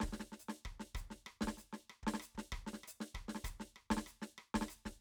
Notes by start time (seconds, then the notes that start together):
0.01 kick, snare
0.13 snare
0.20 snare
0.32 snare
0.40 hi-hat pedal
0.49 snare
0.65 kick, cross-stick
0.80 snare
0.95 kick, cross-stick, hi-hat pedal
1.11 snare
1.27 cross-stick
1.41 kick, snare
1.48 snare
1.58 snare, hi-hat pedal
1.73 snare
1.90 cross-stick
2.03 kick, snare
2.14 snare
2.20 cross-stick, hi-hat pedal
2.35 kick, snare
2.52 kick, cross-stick
2.67 snare
2.73 snare
2.84 cross-stick
2.88 hi-hat pedal
3.01 snare
3.15 kick, cross-stick
3.29 snare
3.35 snare
3.44 kick, cross-stick, hi-hat pedal
3.60 snare
3.76 cross-stick
3.91 kick, snare
3.97 snare
4.07 cross-stick, hi-hat pedal
4.22 snare
4.38 cross-stick
4.55 kick, snare
4.61 snare
4.69 cross-stick, hi-hat pedal
4.86 kick, snare